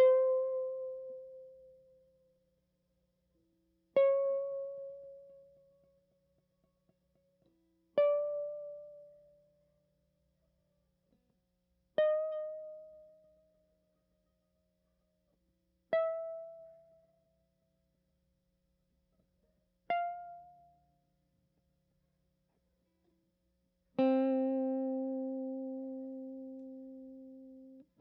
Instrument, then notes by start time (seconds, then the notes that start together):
electric guitar
0.00 C5
3.97 C#5
7.97 D5
11.99 D#5
15.93 E5
19.90 F5
23.99 C4